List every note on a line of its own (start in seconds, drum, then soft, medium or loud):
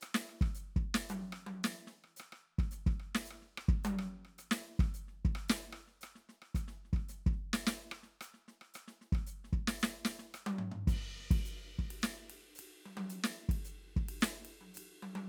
0.01 cross-stick medium
0.01 hi-hat pedal medium
0.14 snare loud
0.29 cross-stick soft
0.41 kick medium
0.41 cross-stick medium
0.55 hi-hat pedal medium
0.76 kick medium
0.94 snare loud
1.09 hi-hat pedal medium
1.09 high tom medium
1.32 cross-stick medium
1.47 high tom medium
1.64 snare medium
1.64 hi-hat pedal medium
1.87 snare soft
2.04 cross-stick soft
2.16 cross-stick medium
2.16 hi-hat pedal medium
2.32 cross-stick medium
2.59 kick medium
2.59 cross-stick soft
2.71 snare soft
2.71 hi-hat pedal medium
2.87 kick medium
2.87 cross-stick soft
3.00 cross-stick soft
3.15 snare medium
3.25 hi-hat pedal medium
3.31 cross-stick medium
3.42 snare soft
3.58 cross-stick medium
3.69 kick medium
3.84 hi-hat pedal medium
3.84 high tom loud
3.99 cross-stick medium
4.25 cross-stick soft
4.38 cross-stick soft
4.38 hi-hat pedal medium
4.51 snare loud
4.79 kick medium
4.79 cross-stick medium
4.94 hi-hat pedal medium
5.08 snare soft
5.25 kick medium
5.35 cross-stick medium
5.49 snare loud
5.49 hi-hat pedal medium
5.73 cross-stick medium
5.87 snare soft
6.01 cross-stick medium
6.01 hi-hat pedal medium
6.15 snare soft
6.29 snare soft
6.42 cross-stick soft
6.55 kick medium
6.55 cross-stick medium
6.55 hi-hat pedal medium
6.68 snare soft
6.85 snare soft
6.93 kick medium
6.93 cross-stick soft
7.09 snare soft
7.09 hi-hat pedal medium
7.26 kick medium
7.33 snare soft
7.53 snare medium
7.67 snare loud
7.67 hi-hat pedal medium
7.92 cross-stick medium
8.03 snare soft
8.21 cross-stick medium
8.21 hi-hat pedal medium
8.34 snare soft
8.48 snare soft
8.61 cross-stick soft
8.74 cross-stick medium
8.74 hi-hat pedal medium
8.88 snare soft
9.01 snare soft
9.12 kick medium
9.12 cross-stick medium
9.27 hi-hat pedal medium
9.44 snare soft
9.53 kick medium
9.67 snare medium
9.80 snare loud
9.80 hi-hat pedal medium
10.05 snare medium
10.19 snare soft
10.34 cross-stick medium
10.34 hi-hat pedal medium
10.46 high tom loud
10.59 floor tom medium
10.72 floor tom medium
10.87 kick medium
10.87 hi-hat pedal medium
10.87 crash medium
11.20 snare soft
11.31 kick medium
11.31 ride medium
11.45 hi-hat pedal medium
11.65 snare soft
11.79 kick medium
11.91 ride medium
12.02 snare medium
12.02 hi-hat pedal medium
12.30 ride medium
12.42 snare soft
12.55 hi-hat pedal medium
12.59 ride medium
12.86 high tom medium
12.97 high tom medium
13.10 hi-hat pedal medium
13.10 ride medium
13.24 snare medium
13.49 kick medium
13.49 ride medium
13.65 hi-hat pedal medium
13.87 snare soft
13.97 kick medium
14.09 ride medium
14.21 snare loud
14.21 hi-hat pedal medium
14.45 ride medium
14.61 high tom soft
14.74 hi-hat pedal medium
14.74 ride medium
15.03 high tom medium
15.15 high tom medium